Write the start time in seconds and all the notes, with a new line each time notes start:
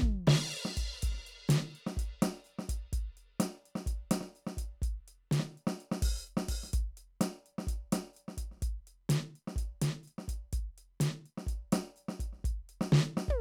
0.01 kick, hi-hat pedal
0.10 kick
0.13 kick
0.28 snare, crash
0.52 closed hi-hat
0.66 snare
0.78 closed hi-hat, kick
1.03 closed hi-hat, kick
1.10 kick, snare
1.15 snare
1.27 closed hi-hat
1.49 closed hi-hat, snare, hi-hat pedal
1.59 snare
1.70 hi-hat pedal
1.76 closed hi-hat
1.87 snare
1.98 closed hi-hat, kick
2.06 kick
2.23 closed hi-hat, snare
2.45 closed hi-hat, hi-hat pedal
2.60 snare
2.70 closed hi-hat, kick
2.94 closed hi-hat, kick
3.00 kick
3.18 closed hi-hat
3.41 closed hi-hat, snare
3.66 closed hi-hat
3.76 snare
3.87 closed hi-hat, kick
4.12 closed hi-hat, snare
4.22 snare
4.36 hi-hat pedal
4.48 snare
4.58 closed hi-hat, kick
4.83 closed hi-hat, kick
5.09 closed hi-hat
5.32 closed hi-hat, snare
5.40 snare
5.58 closed hi-hat
5.68 snare
5.81 closed hi-hat
5.93 snare
6.03 open hi-hat, kick, snare
6.10 kick
6.15 kick
6.22 hi-hat pedal
6.28 closed hi-hat
6.38 snare
6.49 open hi-hat, kick
6.64 snare, hi-hat pedal
6.74 closed hi-hat, kick
6.81 kick
6.98 closed hi-hat
7.22 closed hi-hat, snare
7.47 closed hi-hat
7.59 snare
7.68 closed hi-hat, kick
7.93 closed hi-hat, snare
8.14 closed hi-hat, hi-hat pedal
8.29 snare
8.38 closed hi-hat, kick
8.52 snare
8.58 snare
8.62 closed hi-hat, kick, snare
8.88 closed hi-hat
9.10 closed hi-hat, snare
9.36 closed hi-hat
9.48 snare
9.57 closed hi-hat, kick
9.83 closed hi-hat, snare
10.04 hi-hat pedal
10.08 closed hi-hat
10.19 snare
10.29 closed hi-hat, kick
10.54 closed hi-hat, kick
10.60 kick
10.79 closed hi-hat
11.01 closed hi-hat, snare
11.26 closed hi-hat
11.39 snare
11.48 closed hi-hat, kick
11.73 closed hi-hat, snare
11.97 closed hi-hat, hi-hat pedal
12.09 snare
12.20 closed hi-hat, kick
12.34 snare
12.40 snare
12.45 closed hi-hat, kick
12.52 kick
12.70 closed hi-hat
12.82 snare
12.93 snare
13.18 snare
13.29 kick, hi-hat pedal, high tom
13.36 kick